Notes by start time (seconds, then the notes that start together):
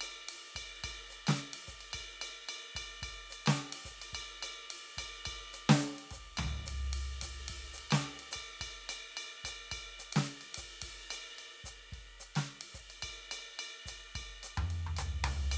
0.01 hi-hat pedal, ride bell
0.29 ride
0.56 kick, hi-hat pedal, ride bell
0.84 kick, ride bell
0.89 kick
1.10 hi-hat pedal, ride bell
1.27 snare, ride bell
1.54 ride
1.68 kick, hi-hat pedal
1.81 ride bell
1.94 kick, ride bell
2.22 hi-hat pedal, ride bell
2.49 ride bell
2.75 kick, hi-hat pedal, ride bell
3.03 kick, ride bell
3.12 kick
3.30 hi-hat pedal, ride bell
3.47 snare, ride bell
3.73 ride
3.85 kick, hi-hat pedal
4.02 ride bell
4.13 kick, ride bell
4.43 hi-hat pedal, ride bell
4.71 ride
4.98 kick, hi-hat pedal, ride bell
5.26 kick, ride bell
5.32 kick
5.53 hi-hat pedal, ride bell
5.69 snare
5.84 ride
5.99 ride
6.11 kick, hi-hat pedal, ride, floor tom
6.17 kick
6.38 kick, floor tom, ride bell
6.66 hi-hat pedal, ride
6.93 ride
7.22 kick, hi-hat pedal, ride
7.48 kick, ride
7.56 kick
7.74 hi-hat pedal
7.78 ride
7.91 snare, ride bell
8.19 ride
8.32 hi-hat pedal, ride bell
8.36 kick
8.61 kick, ride bell
8.89 hi-hat pedal, ride bell
9.17 ride bell
9.44 kick, hi-hat pedal, ride bell
9.72 kick, ride bell
9.99 hi-hat pedal, ride bell
10.13 snare, ride
10.41 ride bell
10.55 kick, hi-hat pedal, ride
10.82 kick, ride
11.11 hi-hat pedal, ride bell
11.39 ride bell
11.64 kick, hi-hat pedal, ride bell
11.93 kick, ride bell
12.01 kick
12.20 hi-hat pedal, ride
12.36 snare, ride bell
12.61 ride
12.75 kick, hi-hat pedal
12.90 ride bell
13.03 kick, ride bell
13.32 hi-hat pedal, ride bell
13.59 ride bell
13.86 kick, hi-hat pedal, ride bell
14.16 kick, cross-stick, ride bell
14.22 kick
14.25 kick
14.43 hi-hat pedal, ride bell
14.58 mid tom
14.71 ride
14.87 floor tom
14.97 hi-hat pedal, ride bell, floor tom
15.24 ride, floor tom
15.52 hi-hat pedal, ride bell